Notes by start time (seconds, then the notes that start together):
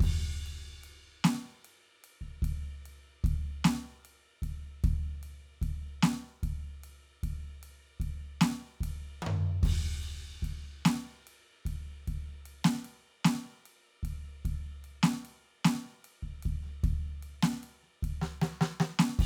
0.01 kick, ride, crash
0.46 ride
0.84 ride
1.25 snare, ride
1.65 ride
2.04 ride
2.21 kick
2.43 kick, ride
2.86 ride
3.24 kick, ride
3.65 snare, ride
4.05 ride
4.42 kick, ride
4.84 kick, ride
5.23 ride
5.62 kick, ride
6.03 snare
6.43 kick, ride
6.84 ride
7.24 kick, ride
7.63 ride
8.00 kick, ride
8.41 snare, ride
8.81 kick, ride
9.22 high tom
9.27 floor tom
9.63 kick, crash
10.04 ride
10.43 kick, ride
10.86 snare, ride
11.27 ride
11.66 kick, ride
11.92 snare
11.96 snare
12.08 kick, ride
12.46 ride
12.65 snare
12.79 snare
12.84 snare, ride
13.25 snare, ride
13.66 ride
14.03 kick, ride
14.23 snare
14.45 kick, ride
14.85 ride
15.03 snare
15.18 snare
15.25 ride
15.65 snare, ride
16.05 ride
16.23 kick
16.43 kick, ride
16.63 snare
16.66 snare
16.84 kick, ride
17.02 snare
17.23 ride
17.43 snare
17.64 ride
17.83 snare
18.03 kick, ride
18.22 snare
18.42 snare
18.61 snare
18.80 snare
18.99 snare
19.19 kick, crash